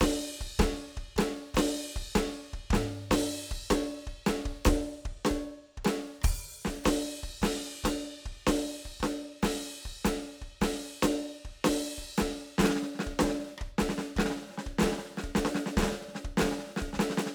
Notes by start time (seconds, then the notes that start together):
0.00 kick, snare, crash
0.41 kick
0.59 kick, snare, percussion
0.97 kick
1.16 kick, snare, percussion
1.54 kick, snare, crash
1.96 kick
2.15 kick, snare, percussion
2.53 kick
2.70 kick, snare, mid tom
3.11 kick, snare, crash
3.51 kick
3.70 kick, snare, percussion
4.07 kick
4.26 kick, snare, percussion
4.45 kick
4.65 kick, snare, ride
5.05 kick
5.25 snare, percussion
5.31 kick
5.77 kick
5.85 snare, percussion
5.97 kick
6.18 kick, cross-stick
6.23 open hi-hat, kick, cross-stick
6.65 kick, snare
6.84 kick, snare, crash
7.23 kick
7.42 kick, snare, crash
7.84 kick, snare, ride bell
8.25 kick
8.47 kick, snare, crash
8.85 kick
9.00 kick, snare, ride bell
9.43 kick, snare, crash
9.85 kick
10.05 kick, snare, ride bell
10.41 kick
10.61 kick, snare, crash
11.02 kick, snare, ride bell
11.45 kick
11.64 snare, crash
11.68 kick
11.98 kick
12.18 kick, snare, ride bell
12.58 kick, snare
12.64 snare
12.69 snare
12.75 snare
12.82 snare
12.94 snare
12.99 snare
13.06 kick
13.19 kick, snare
13.24 snare
13.29 snare
13.33 snare
13.39 snare
13.43 snare
13.46 snare
13.49 snare
13.52 snare
13.58 kick, cross-stick
13.78 kick, snare
13.89 snare
13.98 snare
14.16 kick, cross-stick, snare
14.25 snare
14.30 snare
14.36 snare
14.41 snare
14.49 snare
14.51 snare
14.54 snare
14.58 snare
14.66 kick
14.78 snare
14.81 kick, snare
14.86 snare
14.92 snare
14.98 snare
15.05 snare
15.10 snare
15.14 snare
15.17 snare
15.23 kick
15.35 kick, snare
15.45 snare
15.55 snare
15.66 snare
15.77 kick, snare
15.80 snare
15.82 snare
15.87 snare
15.92 snare
16.01 snare
16.08 snare
16.12 snare
16.15 snare
16.25 kick
16.37 snare
16.39 kick, snare
16.45 snare
16.51 snare
16.58 snare
16.63 snare
16.66 snare
16.69 snare
16.76 snare
16.82 kick
16.93 kick, snare
16.99 snare
17.10 snare
17.17 snare
17.26 snare